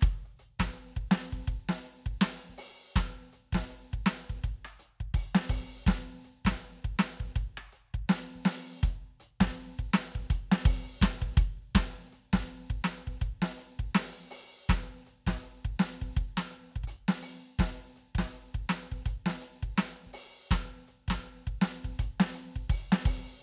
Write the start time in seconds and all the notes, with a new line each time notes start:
0.01 closed hi-hat, kick, cross-stick, hi-hat pedal
0.26 closed hi-hat
0.39 closed hi-hat
0.59 kick, snare, closed hi-hat
0.76 closed hi-hat
0.96 kick, closed hi-hat
1.11 closed hi-hat, snare
1.32 kick, closed hi-hat
1.48 closed hi-hat, kick
1.69 snare, closed hi-hat
1.84 closed hi-hat
2.04 kick, closed hi-hat
2.21 open hi-hat, snare
2.49 kick
2.58 open hi-hat
2.96 closed hi-hat, kick, snare, hi-hat pedal
3.17 closed hi-hat
3.33 closed hi-hat
3.53 kick, snare, closed hi-hat
3.70 closed hi-hat
3.91 kick, closed hi-hat
4.06 closed hi-hat, snare
4.30 kick, closed hi-hat
4.44 closed hi-hat, kick
4.65 cross-stick
4.79 closed hi-hat
5.00 kick, closed hi-hat
5.14 open hi-hat, kick
5.35 snare
5.49 open hi-hat, kick
5.87 open hi-hat, kick, snare, hi-hat pedal
6.08 closed hi-hat
6.24 closed hi-hat
6.45 kick, snare, closed hi-hat
6.52 snare
6.63 closed hi-hat
6.84 kick, closed hi-hat
6.99 closed hi-hat, snare
7.20 kick, closed hi-hat
7.36 closed hi-hat, kick
7.57 cross-stick, closed hi-hat
7.72 closed hi-hat
7.94 kick
8.07 open hi-hat, snare, hi-hat pedal
8.35 kick
8.45 open hi-hat, snare
8.65 open hi-hat
8.82 closed hi-hat, kick, snare, hi-hat pedal
9.06 closed hi-hat
9.20 closed hi-hat
9.40 kick, snare, closed hi-hat
9.57 closed hi-hat
9.79 kick, closed hi-hat
9.94 closed hi-hat, snare
10.15 kick, closed hi-hat
10.30 closed hi-hat, kick
10.52 snare
10.65 open hi-hat, kick
11.01 closed hi-hat, kick, snare, hi-hat pedal
11.22 kick, closed hi-hat
11.31 kick
11.37 closed hi-hat, kick
11.75 open hi-hat, kick, snare, hi-hat pedal
11.99 closed hi-hat
12.12 closed hi-hat
12.33 kick, snare, closed hi-hat
12.49 closed hi-hat
12.70 kick, closed hi-hat
12.84 closed hi-hat, snare
13.07 kick, closed hi-hat
13.21 closed hi-hat, kick
13.42 snare, closed hi-hat
13.58 closed hi-hat
13.79 kick
13.95 open hi-hat, snare
14.30 open hi-hat
14.69 open hi-hat, kick, snare, hi-hat pedal
14.91 closed hi-hat
15.07 closed hi-hat
15.27 kick, snare, closed hi-hat
15.43 closed hi-hat
15.65 kick, closed hi-hat
15.79 closed hi-hat, snare
16.02 kick, closed hi-hat
16.17 closed hi-hat, kick
16.37 snare
16.51 closed hi-hat
16.72 closed hi-hat
16.76 kick
16.84 closed hi-hat, kick
17.08 snare
17.22 open hi-hat
17.59 closed hi-hat, kick, snare, hi-hat pedal
17.81 closed hi-hat
17.96 closed hi-hat
18.15 kick, snare, closed hi-hat
18.34 closed hi-hat
18.40 snare
18.54 kick
18.69 closed hi-hat, snare
18.92 kick, closed hi-hat
19.06 closed hi-hat, kick
19.26 snare
19.29 snare
19.41 closed hi-hat
19.62 kick, closed hi-hat
19.76 open hi-hat, snare, hi-hat pedal
20.06 kick
20.13 open hi-hat
20.51 open hi-hat, kick, snare, hi-hat pedal
20.73 closed hi-hat
20.88 closed hi-hat
21.08 kick, snare, closed hi-hat
21.26 closed hi-hat
21.47 kick, closed hi-hat
21.62 closed hi-hat, snare
21.84 kick, closed hi-hat
21.99 closed hi-hat, kick
22.20 snare
22.34 closed hi-hat
22.56 kick, closed hi-hat
22.68 open hi-hat, kick, hi-hat pedal
22.92 snare
23.05 open hi-hat, kick